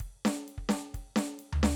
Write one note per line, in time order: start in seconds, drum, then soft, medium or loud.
0.03 kick soft
0.03 ride medium
0.25 snare loud
0.25 ride medium
0.48 ride medium
0.58 kick soft
0.69 snare loud
0.69 ride medium
0.94 kick soft
0.94 ride medium
1.16 snare loud
1.16 ride medium
1.39 ride medium
1.52 floor tom loud
1.63 snare loud